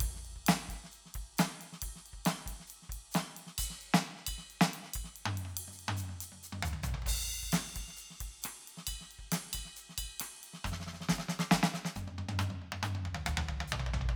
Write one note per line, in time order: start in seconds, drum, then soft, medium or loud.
0.01 kick medium
0.01 ride loud
0.14 kick soft
0.14 snare soft
0.25 ride soft
0.36 kick soft
0.47 snare loud
0.47 hi-hat pedal medium
0.47 ride loud
0.69 kick soft
0.69 ride medium
0.76 kick soft
0.79 kick soft
0.84 snare soft
0.92 hi-hat pedal soft
0.92 ride soft
1.06 snare soft
1.15 kick soft
1.15 ride medium
1.22 kick soft
1.37 snare loud
1.37 hi-hat pedal medium
1.37 ride loud
1.61 ride medium
1.73 snare soft
1.82 kick soft
1.82 hi-hat pedal soft
1.82 ride loud
1.89 kick soft
1.96 snare soft
2.06 ride soft
2.14 kick soft
2.26 snare loud
2.26 hi-hat pedal medium
2.26 ride loud
2.46 kick soft
2.46 ride medium
2.52 kick soft
2.60 snare soft
2.67 hi-hat pedal soft
2.67 ride medium
2.83 snare soft
2.90 kick soft
2.90 ride medium
2.96 kick soft
3.12 snare medium
3.12 hi-hat pedal medium
3.12 ride medium
3.37 ride medium
3.47 snare soft
3.59 kick medium
3.59 hi-hat pedal loud
3.59 ride bell loud
3.66 kick soft
3.66 snare soft
3.70 kick soft
3.82 ride soft
3.94 snare loud
4.17 snare soft
4.27 kick soft
4.27 ride bell loud
4.35 kick soft
4.35 snare soft
4.51 ride soft
4.61 snare loud
4.74 ride medium
4.84 snare soft
4.94 kick soft
4.94 ride bell medium
5.03 kick soft
5.03 snare soft
5.16 ride medium
5.26 high tom loud
5.38 ride medium
5.45 hi-hat pedal soft
5.45 high tom soft
5.57 ride loud
5.68 high tom medium
5.73 hi-hat pedal medium
5.80 ride soft
5.89 high tom loud
5.97 hi-hat pedal medium
5.97 ride soft
6.09 high tom soft
6.21 hi-hat pedal medium
6.21 ride medium
6.32 high tom soft
6.43 hi-hat pedal medium
6.53 high tom loud
6.63 hi-hat pedal medium
6.63 mid tom loud
6.74 mid tom medium
6.84 floor tom loud
6.84 hi-hat pedal medium
6.94 floor tom medium
7.03 kick medium
7.03 floor tom soft
7.07 hi-hat pedal loud
7.07 crash loud
7.22 kick soft
7.43 kick soft
7.49 kick soft
7.53 snare loud
7.53 hi-hat pedal medium
7.53 ride loud
7.76 kick soft
7.76 ride medium
7.83 kick soft
7.88 snare soft
7.97 hi-hat pedal medium
7.97 ride soft
8.11 snare soft
8.21 kick soft
8.21 ride medium
8.28 kick soft
8.43 cross-stick medium
8.43 hi-hat pedal medium
8.43 ride loud
8.68 ride medium
8.78 snare soft
8.87 kick soft
8.87 hi-hat pedal medium
8.87 ride bell loud
8.94 kick soft
9.01 snare soft
9.11 ride soft
9.19 kick soft
9.32 snare loud
9.32 hi-hat pedal medium
9.32 ride loud
9.53 kick soft
9.53 ride bell loud
9.61 kick soft
9.66 snare soft
9.77 hi-hat pedal medium
9.77 ride soft
9.90 snare soft
9.98 kick soft
9.98 ride bell loud
10.05 kick soft
10.20 cross-stick medium
10.20 hi-hat pedal medium
10.20 ride loud
10.44 ride medium
10.54 snare soft
10.65 kick soft
10.65 hi-hat pedal medium
10.65 high tom loud
10.72 kick soft
10.72 snare medium
10.81 snare soft
10.87 snare medium
10.94 snare soft
11.01 snare medium
11.09 kick soft
11.09 snare loud
11.14 hi-hat pedal medium
11.19 snare medium
11.40 snare loud
11.52 kick soft
11.52 snare loud
11.52 hi-hat pedal soft
11.63 snare loud
11.74 snare medium
11.85 snare medium
11.96 kick soft
11.96 hi-hat pedal medium
11.96 high tom loud
12.08 high tom medium
12.19 high tom medium
12.29 high tom loud
12.40 hi-hat pedal medium
12.40 high tom loud
12.50 high tom medium
12.62 high tom soft
12.73 high tom medium
12.81 kick soft
12.81 hi-hat pedal medium
12.81 high tom loud
12.95 high tom medium
13.04 kick soft
13.04 mid tom medium
13.15 mid tom loud
13.26 kick soft
13.26 hi-hat pedal medium
13.26 mid tom loud
13.38 mid tom loud
13.48 kick soft
13.48 mid tom medium
13.61 mid tom loud
13.68 hi-hat pedal medium
13.73 floor tom loud
13.80 floor tom loud
13.87 floor tom medium
13.94 floor tom loud
14.02 floor tom medium
14.09 floor tom medium